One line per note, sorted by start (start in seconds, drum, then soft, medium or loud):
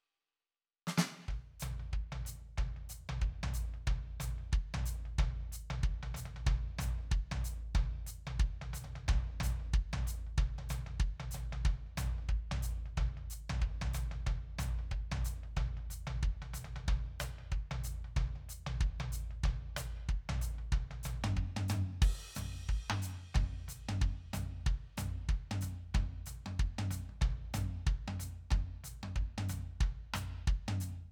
0.87 snare medium
0.98 snare loud
1.28 kick medium
1.28 floor tom medium
1.60 floor tom loud
1.60 hi-hat pedal medium
1.79 floor tom soft
1.93 kick medium
1.93 floor tom soft
2.12 floor tom medium
2.25 floor tom soft
2.25 hi-hat pedal medium
2.58 kick medium
2.58 floor tom medium
2.76 floor tom soft
2.89 floor tom soft
2.89 hi-hat pedal medium
3.09 floor tom loud
3.21 kick medium
3.43 floor tom loud
3.54 hi-hat pedal medium
3.74 floor tom soft
3.87 kick medium
3.87 floor tom medium
4.20 floor tom loud
4.20 hi-hat pedal medium
4.38 floor tom soft
4.52 kick medium
4.52 floor tom soft
4.74 floor tom loud
4.86 floor tom soft
4.86 hi-hat pedal medium
5.05 floor tom soft
5.18 kick medium
5.18 floor tom loud
5.40 floor tom soft
5.52 floor tom soft
5.52 hi-hat pedal medium
5.70 floor tom loud
5.83 kick medium
5.83 floor tom soft
6.03 floor tom medium
6.14 floor tom medium
6.14 hi-hat pedal medium
6.25 floor tom medium
6.36 floor tom medium
6.46 kick medium
6.46 floor tom loud
6.79 floor tom loud
6.79 hi-hat pedal medium
6.98 floor tom soft
7.11 kick medium
7.11 floor tom soft
7.31 floor tom loud
7.44 floor tom soft
7.44 hi-hat pedal medium
7.75 kick medium
7.75 floor tom loud
7.93 floor tom soft
7.98 floor tom soft
8.06 floor tom soft
8.06 hi-hat pedal medium
8.27 floor tom loud
8.39 kick medium
8.39 floor tom soft
8.61 floor tom medium
8.73 floor tom medium
8.73 hi-hat pedal medium
8.84 floor tom medium
8.95 floor tom medium
9.08 kick medium
9.08 floor tom loud
9.27 floor tom soft
9.40 floor tom loud
9.40 hi-hat pedal medium
9.60 floor tom soft
9.73 kick medium
9.93 floor tom loud
10.07 floor tom soft
10.07 hi-hat pedal medium
10.26 floor tom soft
10.38 kick medium
10.38 floor tom medium
10.58 floor tom medium
10.69 floor tom loud
10.69 hi-hat pedal medium
10.86 floor tom medium
11.00 kick medium
11.20 floor tom medium
11.31 floor tom medium
11.31 hi-hat pedal medium
11.52 floor tom medium
11.65 kick medium
11.65 floor tom medium
11.86 floor tom soft
11.97 floor tom loud
11.97 hi-hat pedal medium
12.18 floor tom soft
12.29 kick medium
12.29 floor tom soft
12.51 floor tom loud
12.62 floor tom soft
12.62 hi-hat pedal medium
12.86 floor tom soft
12.97 kick medium
12.97 floor tom loud
13.17 floor tom soft
13.30 floor tom soft
13.30 hi-hat pedal medium
13.50 floor tom loud
13.62 kick medium
13.62 floor tom soft
13.81 floor tom loud
13.93 floor tom medium
13.93 hi-hat pedal medium
14.11 floor tom medium
14.26 kick medium
14.26 floor tom medium
14.59 floor tom loud
14.59 hi-hat pedal medium
14.79 floor tom soft
14.91 kick medium
14.91 floor tom soft
15.12 floor tom loud
15.25 floor tom soft
15.25 hi-hat pedal medium
15.43 floor tom soft
15.57 kick medium
15.57 floor tom loud
15.77 floor tom soft
15.90 floor tom soft
15.90 hi-hat pedal medium
16.07 floor tom loud
16.23 kick medium
16.23 floor tom soft
16.42 kick soft
16.42 floor tom medium
16.53 floor tom medium
16.53 hi-hat pedal medium
16.64 floor tom medium
16.76 floor tom medium
16.88 kick medium
16.88 floor tom loud
17.06 floor tom soft
17.20 hi-hat pedal medium
17.20 floor tom loud
17.38 floor tom soft
17.52 kick medium
17.52 floor tom soft
17.71 floor tom loud
17.84 floor tom soft
17.84 hi-hat pedal medium
18.04 floor tom soft
18.16 kick medium
18.16 floor tom loud
18.35 floor tom soft
18.49 floor tom soft
18.49 hi-hat pedal medium
18.66 floor tom loud
18.81 kick medium
18.81 floor tom soft
19.00 floor tom loud
19.12 floor tom soft
19.12 hi-hat pedal medium
19.31 floor tom soft
19.43 kick medium
19.43 floor tom loud
19.64 floor tom soft
19.76 hi-hat pedal medium
19.76 floor tom loud
19.96 floor tom soft
20.09 kick medium
20.09 floor tom soft
20.29 floor tom loud
20.41 floor tom soft
20.41 hi-hat pedal medium
20.58 floor tom soft
20.72 kick medium
20.72 floor tom medium
20.91 floor tom medium
21.03 floor tom loud
21.03 hi-hat pedal medium
21.24 high tom loud
21.37 kick medium
21.56 high tom loud
21.68 hi-hat pedal medium
21.68 high tom loud
22.02 kick loud
22.02 crash medium
22.35 kick soft
22.35 floor tom medium
22.35 hi-hat pedal medium
22.35 high tom medium
22.69 kick medium
22.69 floor tom soft
22.90 high tom loud
23.02 hi-hat pedal medium
23.34 kick medium
23.34 floor tom medium
23.34 high tom loud
23.68 floor tom medium
23.68 hi-hat pedal medium
23.89 high tom loud
24.01 kick medium
24.01 floor tom soft
24.33 floor tom medium
24.33 hi-hat pedal medium
24.33 high tom loud
24.66 kick medium
24.66 floor tom medium
24.97 floor tom medium
24.97 hi-hat pedal medium
24.97 high tom loud
25.29 kick medium
25.29 floor tom medium
25.51 high tom loud
25.61 floor tom medium
25.61 hi-hat pedal medium
25.94 kick medium
25.94 floor tom medium
25.94 high tom loud
26.26 floor tom medium
26.26 hi-hat pedal medium
26.46 high tom loud
26.59 kick medium
26.59 floor tom soft
26.78 high tom loud
26.91 floor tom medium
26.91 hi-hat pedal medium
27.09 high tom soft
27.21 kick medium
27.21 floor tom loud
27.54 floor tom medium
27.54 hi-hat pedal medium
27.54 high tom loud
27.87 kick medium
27.87 floor tom medium
28.08 high tom loud
28.18 kick soft
28.18 floor tom medium
28.18 hi-hat pedal medium
28.51 kick medium
28.51 floor tom medium
28.51 high tom medium
28.84 floor tom medium
28.84 hi-hat pedal medium
29.03 high tom medium
29.16 kick medium
29.16 floor tom soft
29.38 high tom loud
29.49 floor tom medium
29.49 hi-hat pedal medium
29.80 kick medium
29.80 floor tom medium
30.14 floor tom medium
30.14 hi-hat pedal medium
30.14 high tom loud
30.47 kick medium
30.47 floor tom soft
30.68 high tom loud
30.80 floor tom soft
30.80 hi-hat pedal medium